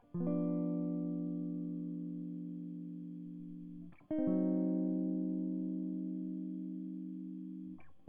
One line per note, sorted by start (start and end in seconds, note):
0.16 3.92 F3
0.21 3.88 B3
0.27 3.90 D4
4.11 7.80 D#4
4.19 7.80 C4
4.28 7.79 F#3